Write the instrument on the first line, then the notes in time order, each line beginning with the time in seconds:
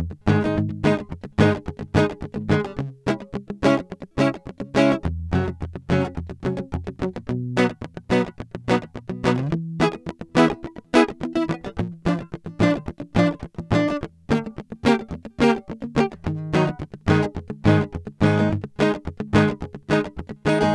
acoustic guitar
0.01 F2
0.29 G#2 D#3 G#3
0.33 D#4
0.45 G#3 D#4
0.50 G#2
0.59 G#2
0.72 G#2
0.85 D3 G#3 D#4
0.94 F2
1.40 G#2 D3 G#3 D#4
1.97 D3 G#3 D#4
2.52 D3 G#3
2.78 C#3
3.10 G3 E4
3.65 C#3 G#3 C#4 E4
4.20 C#3 G#3 C#4 E4
4.76 C#3 G#3 C#4 E4
4.92 E4
5.05 E2
5.33 F#2 C3 F#3
5.62 E2
5.91 F#2 C#3 F#3 C#4
6.04 C#4
6.46 C3 F#3 C#4
6.59 C#4
7.01 C3 F#3
7.31 B2 F#3
7.58 F#3 B3
8.12 B2 F#3 B3
8.70 A#2 F#3 B3
9.11 F#3
9.26 B2 B3
9.54 E3
9.81 E3 B3 E4 G#4
10.37 E3 B3 E4 G#4
10.95 B3 E4 G#4
11.37 E4
11.51 E3
11.78 A#2 F3
12.07 F3 G#3 D4
12.62 A#2 F3 G#3 D4
13.16 A#2 F3 G#3
13.20 D4
13.72 A#2 E3 G#3
13.77 D4
13.90 D4
14.32 D#3 A#3
14.88 A#3 G4
15.43 A#3 G4
15.98 A#3 G4
16.29 D#3
16.55 D#3 F#3 D#4
16.68 D#4
17.10 D#3 G#3 D#4
17.24 G#4
17.66 G#2 D#3 G#3
17.71 D#4
18.22 G#2 D#3 G#3
18.27 D#4
18.41 G#3 D#4
18.54 G2
18.81 D3 G#3 D#4
19.35 G#2 D#3 G#3
19.39 D#4
19.91 D3 G#3 D#4
20.47 D#3 G#3 D#4 G#4
20.62 G#3 D#4 G#4
20.67 D#3